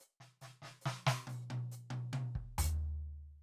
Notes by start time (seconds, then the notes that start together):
0.00 hi-hat pedal
0.20 snare
0.41 snare, hi-hat pedal
0.62 snare
0.64 snare
0.81 hi-hat pedal
0.86 snare
1.07 snare
1.27 hi-hat pedal, high tom
1.50 closed hi-hat, high tom
1.72 hi-hat pedal
1.90 high tom
2.13 high tom
2.35 kick
2.58 open hi-hat, floor tom